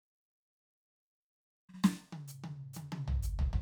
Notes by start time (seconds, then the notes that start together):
1.70 snare
1.74 snare
1.78 snare
1.84 snare, hi-hat pedal
2.13 high tom
2.28 hi-hat pedal
2.44 open hi-hat, high tom
2.74 hi-hat pedal, high tom
2.93 high tom
3.08 floor tom
3.23 hi-hat pedal
3.40 floor tom
3.54 floor tom